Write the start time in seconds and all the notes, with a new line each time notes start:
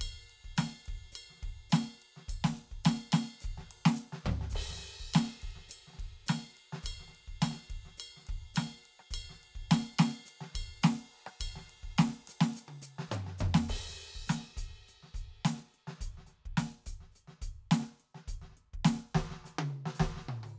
0.01 kick, ride bell
0.07 kick
0.10 kick
0.31 ride
0.45 kick
0.58 snare, hi-hat pedal, ride bell
0.87 kick, ride
0.95 kick
0.97 kick
1.05 snare
1.13 hi-hat pedal, ride bell
1.31 snare
1.38 snare
1.44 kick, ride
1.50 kick
1.71 snare, hi-hat pedal, ride bell
2.03 ride
2.18 snare
2.29 kick, hi-hat pedal, ride bell
2.35 kick
2.39 kick
2.45 snare
2.58 ride
2.72 kick
2.85 snare, hi-hat pedal, ride bell
3.13 snare, ride bell
3.42 kick, hi-hat pedal, ride
3.51 kick
3.54 kick
3.59 snare
3.66 kick
3.72 ride
3.86 snare
3.96 hi-hat pedal, ride
4.13 snare
4.26 kick, floor tom
4.42 snare
4.51 kick, hi-hat pedal
4.56 crash
4.61 kick
4.64 kick
4.71 snare
4.79 snare
4.85 ride
5.01 kick
5.15 snare, hi-hat pedal, ride bell
5.26 snare
5.43 kick, ride
5.56 snare
5.70 hi-hat pedal, ride bell
5.88 snare
5.95 snare
6.00 kick, ride
6.28 snare, hi-hat pedal, ride bell
6.58 ride
6.74 snare
6.84 kick, hi-hat pedal, ride bell
7.01 snare
7.09 snare
7.16 ride
7.29 kick
7.42 snare, hi-hat pedal, ride bell
7.52 snare
7.71 kick, ride
7.76 kick
7.86 snare
7.98 hi-hat pedal, ride bell
8.18 snare
8.24 snare, ride
8.30 kick
8.36 kick
8.39 kick
8.55 snare, hi-hat pedal, ride bell
8.69 cross-stick
8.87 ride
9.00 cross-stick
9.12 kick, hi-hat pedal, ride bell
9.18 kick
9.31 snare
9.44 ride
9.56 kick
9.71 snare, hi-hat pedal, ride bell
10.00 snare, ride bell
10.08 snare
10.27 hi-hat pedal, ride
10.42 snare
10.56 kick, ride bell
10.62 kick
10.65 kick
10.83 snare, hi-hat pedal, ride
11.15 ride
11.27 cross-stick
11.41 kick, hi-hat pedal, ride bell
11.47 kick
11.50 kick
11.57 snare
11.71 ride
11.84 kick
11.99 snare, hi-hat pedal, ride
12.09 snare
12.29 hi-hat pedal, ride
12.42 snare
12.55 hi-hat pedal, ride
12.69 high tom
12.83 hi-hat pedal
13.00 snare
13.08 kick
13.12 hi-hat pedal, mid tom
13.28 snare
13.39 kick, floor tom, hi-hat pedal
13.51 kick
13.55 snare
13.70 kick, hi-hat pedal, crash
13.79 kick
13.89 snare
14.16 kick
14.28 closed hi-hat, snare, hi-hat pedal
14.40 snare
14.58 closed hi-hat, kick
14.64 kick
14.68 snare
14.89 closed hi-hat
15.04 snare
15.15 closed hi-hat, kick
15.46 closed hi-hat, snare
15.56 snare
15.75 closed hi-hat
15.88 snare
16.02 closed hi-hat, kick
16.07 kick
16.18 snare
16.28 closed hi-hat, snare
16.46 kick
16.58 closed hi-hat, snare
16.87 open hi-hat, kick
17.02 snare
17.13 closed hi-hat, hi-hat pedal
17.29 snare
17.43 closed hi-hat, kick
17.48 kick
17.72 closed hi-hat, snare
17.81 snare
18.01 closed hi-hat
18.16 snare
18.29 closed hi-hat, kick
18.35 kick
18.43 snare
18.51 snare
18.58 closed hi-hat
18.75 kick
18.86 closed hi-hat, snare
18.95 snare
19.16 kick, snare
19.32 snare
19.45 snare, hi-hat pedal
19.60 high tom
19.71 cross-stick
19.87 snare
19.96 hi-hat pedal
20.01 kick, snare
20.08 kick
20.11 kick
20.17 snare
20.23 kick, hi-hat pedal
20.30 mid tom
20.44 hi-hat pedal, open hi-hat, high tom